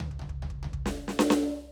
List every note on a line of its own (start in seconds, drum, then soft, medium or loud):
0.00 floor tom medium
0.00 high tom medium
0.11 kick soft
0.19 floor tom medium
0.19 high tom medium
0.29 kick soft
0.42 floor tom medium
0.42 high tom medium
0.50 kick soft
0.63 floor tom medium
0.63 high tom medium
0.73 kick medium
0.86 snare loud
1.08 snare medium
1.19 snare loud
1.30 snare loud